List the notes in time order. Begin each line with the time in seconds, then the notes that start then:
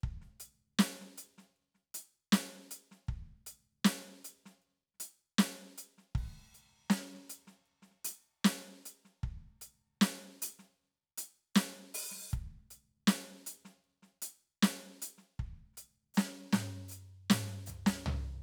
0.01 kick, closed hi-hat
0.22 snare
0.32 snare
0.40 closed hi-hat
0.79 snare
1.01 snare
1.18 closed hi-hat
1.38 snare
1.56 closed hi-hat
1.75 snare
1.95 closed hi-hat
2.33 snare
2.56 snare
2.71 closed hi-hat
2.92 snare
3.07 kick, closed hi-hat
3.47 closed hi-hat
3.85 snare
4.09 snare
4.25 closed hi-hat
4.46 snare
4.62 closed hi-hat
4.94 snare
5.00 closed hi-hat
5.39 snare
5.78 closed hi-hat
5.98 snare
6.15 kick, crash
6.40 snare
6.54 closed hi-hat
6.90 snare
7.15 snare
7.30 closed hi-hat
7.47 snare
7.66 closed hi-hat
7.82 snare
7.91 snare
8.05 closed hi-hat
8.45 snare
8.65 snare
8.86 closed hi-hat
9.05 snare
9.23 kick
9.62 closed hi-hat
10.01 snare
10.21 snare
10.42 closed hi-hat
10.59 snare
11.18 closed hi-hat
11.55 snare, hi-hat pedal
11.77 snare
11.87 snare
11.94 open hi-hat
12.11 snare
12.16 snare
12.19 snare
12.24 snare
12.30 kick, hi-hat pedal
12.35 snare
12.71 closed hi-hat
13.08 snare
13.47 closed hi-hat
13.65 snare
13.84 closed hi-hat
14.03 snare
14.22 closed hi-hat
14.63 snare
14.81 snare
15.02 closed hi-hat
15.18 snare
15.39 kick
15.74 open hi-hat, snare
16.14 snare, hi-hat pedal
16.53 snare, mid tom
16.89 closed hi-hat, hi-hat pedal
17.30 snare, mid tom
17.47 snare
17.67 floor tom, hi-hat pedal
17.87 snare
18.06 floor tom